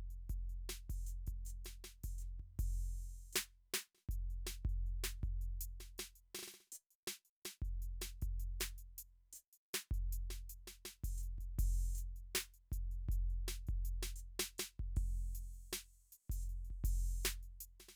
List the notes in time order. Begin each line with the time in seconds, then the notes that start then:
0.10 closed hi-hat
0.29 kick, closed hi-hat
0.49 closed hi-hat
0.69 snare, closed hi-hat
0.90 kick, open hi-hat
1.06 closed hi-hat, hi-hat pedal
1.27 kick, closed hi-hat
1.45 hi-hat pedal, open hi-hat
1.65 snare, closed hi-hat
1.84 snare, closed hi-hat
2.03 open hi-hat, kick
2.18 snare, hi-hat pedal
2.40 kick
2.59 open hi-hat, kick
3.33 snare, hi-hat pedal
3.74 snare
3.77 snare
3.95 snare
3.98 snare
4.09 kick, closed hi-hat
4.30 closed hi-hat
4.47 snare, closed hi-hat
4.65 kick
4.69 closed hi-hat
4.86 closed hi-hat
5.04 snare, closed hi-hat
5.23 kick, closed hi-hat
5.41 closed hi-hat
5.61 closed hi-hat
5.80 snare, closed hi-hat
5.98 snare, closed hi-hat
6.15 closed hi-hat
6.35 snare, closed hi-hat
6.39 snare
6.43 snare
6.48 snare, closed hi-hat
6.54 snare
6.60 snare
6.67 snare
6.72 hi-hat pedal
6.90 closed hi-hat
7.07 snare, closed hi-hat
7.25 closed hi-hat
7.45 snare, closed hi-hat
7.62 kick, closed hi-hat
7.82 closed hi-hat
8.01 snare, closed hi-hat
8.22 kick, closed hi-hat
8.40 closed hi-hat
8.60 snare, closed hi-hat
8.78 closed hi-hat
8.98 closed hi-hat
9.33 closed hi-hat, hi-hat pedal
9.53 closed hi-hat
9.73 snare, closed hi-hat
9.91 kick, closed hi-hat
10.12 closed hi-hat
10.30 snare, closed hi-hat
10.49 closed hi-hat
10.67 snare, closed hi-hat
10.85 snare, closed hi-hat
11.04 open hi-hat, kick
11.18 hi-hat pedal
11.23 closed hi-hat
11.38 kick, closed hi-hat
11.59 open hi-hat, kick
11.95 closed hi-hat, hi-hat pedal
12.16 closed hi-hat
12.35 snare, closed hi-hat
12.38 snare
12.54 closed hi-hat
12.72 kick, closed hi-hat
12.91 closed hi-hat
13.09 kick, closed hi-hat
13.30 closed hi-hat
13.48 snare, closed hi-hat
13.67 kick, closed hi-hat
13.85 closed hi-hat
14.03 snare
14.16 hi-hat pedal
14.39 snare
14.58 snare, hi-hat pedal
14.79 kick
14.96 kick, crash
15.35 closed hi-hat
15.53 closed hi-hat
15.73 closed hi-hat, snare
15.93 closed hi-hat
16.12 closed hi-hat
16.30 open hi-hat, kick
16.43 hi-hat pedal
16.49 closed hi-hat
16.65 closed hi-hat
16.70 kick
16.84 open hi-hat, kick
17.23 snare, closed hi-hat, hi-hat pedal
17.43 closed hi-hat
17.60 closed hi-hat
17.80 snare, closed hi-hat
17.88 snare